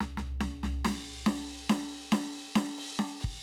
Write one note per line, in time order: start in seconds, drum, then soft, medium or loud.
0.00 snare medium
0.00 floor tom medium
0.17 snare medium
0.17 floor tom medium
0.41 snare loud
0.41 floor tom medium
0.63 snare medium
0.63 floor tom medium
0.85 snare loud
0.85 ride loud
1.26 snare loud
1.26 crash loud
1.48 crash soft
1.69 snare loud
1.69 crash loud
1.90 crash medium
2.12 snare loud
2.12 crash loud
2.34 crash medium
2.56 snare loud
2.56 crash loud
2.78 crash loud
2.99 snare loud
3.20 kick soft
3.20 ride loud